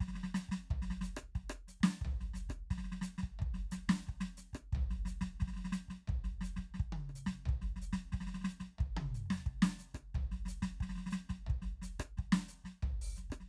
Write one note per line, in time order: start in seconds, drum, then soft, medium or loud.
0.01 kick soft
0.01 snare soft
0.08 snare soft
0.14 snare soft
0.16 snare soft
0.24 snare soft
0.35 snare medium
0.35 hi-hat pedal medium
0.49 kick soft
0.49 snare medium
0.71 kick soft
0.71 floor tom medium
0.83 snare soft
0.91 snare soft
1.02 snare medium
1.02 hi-hat pedal medium
1.17 kick soft
1.17 cross-stick medium
1.36 kick soft
1.36 snare soft
1.50 cross-stick medium
1.68 snare soft
1.68 hi-hat pedal medium
1.81 kick soft
1.81 snare loud
2.02 kick soft
2.02 floor tom medium
2.21 snare soft
2.34 snare soft
2.34 hi-hat pedal medium
2.50 kick soft
2.50 cross-stick medium
2.71 kick soft
2.71 snare soft
2.78 snare soft
2.85 snare soft
2.92 snare soft
3.02 snare medium
3.02 hi-hat pedal medium
3.19 snare medium
3.24 kick soft
3.40 kick soft
3.40 floor tom medium
3.54 snare soft
3.72 snare soft
3.72 hi-hat pedal medium
3.89 kick soft
3.89 snare medium
4.07 kick soft
4.07 snare soft
4.21 snare medium
4.38 snare soft
4.38 hi-hat pedal medium
4.54 kick soft
4.54 cross-stick medium
4.73 kick soft
4.73 floor tom loud
4.91 snare soft
5.06 snare soft
5.06 hi-hat pedal medium
5.22 kick soft
5.22 snare medium
5.40 kick soft
5.40 snare soft
5.48 snare soft
5.54 snare soft
5.57 snare soft
5.65 snare soft
5.73 snare medium
5.73 hi-hat pedal medium
5.89 kick soft
5.89 snare soft
6.08 kick soft
6.08 floor tom medium
6.25 snare soft
6.41 snare soft
6.41 hi-hat pedal medium
6.57 kick soft
6.57 snare soft
6.75 snare soft
6.80 kick soft
6.93 high tom loud
7.10 cross-stick soft
7.16 hi-hat pedal medium
7.27 kick soft
7.27 snare medium
7.46 kick soft
7.46 floor tom medium
7.62 snare soft
7.77 snare soft
7.82 hi-hat pedal medium
7.93 kick soft
7.93 snare medium
8.13 kick soft
8.13 snare soft
8.21 snare soft
8.27 snare soft
8.35 snare soft
8.42 snare soft
8.45 snare medium
8.50 hi-hat pedal soft
8.61 kick soft
8.61 snare soft
8.79 kick soft
8.79 floor tom medium
8.97 high tom loud
9.15 snare soft
9.15 hi-hat pedal soft
9.26 kick soft
9.31 snare medium
9.47 kick soft
9.47 snare soft
9.63 snare loud
9.79 snare soft
9.79 hi-hat pedal medium
9.95 kick soft
9.95 cross-stick medium
10.15 kick soft
10.15 floor tom medium
10.32 snare soft
10.46 snare soft
10.46 hi-hat pedal medium
10.63 kick soft
10.63 snare medium
10.81 kick soft
10.81 snare soft
10.90 snare soft
10.96 snare soft
10.98 snare soft
11.07 snare soft
11.11 snare medium
11.11 hi-hat pedal medium
11.30 kick soft
11.30 snare soft
11.47 kick soft
11.47 floor tom medium
11.62 snare soft
11.82 snare soft
11.82 hi-hat pedal medium
12.00 kick soft
12.00 cross-stick medium
12.18 kick soft
12.18 snare soft
12.33 snare loud
12.49 snare soft
12.49 hi-hat pedal medium
12.65 kick soft
12.65 snare soft
12.83 kick soft
12.83 floor tom medium
13.02 open hi-hat medium
13.17 snare soft
13.17 hi-hat pedal soft
13.31 kick soft
13.31 cross-stick medium
13.41 snare soft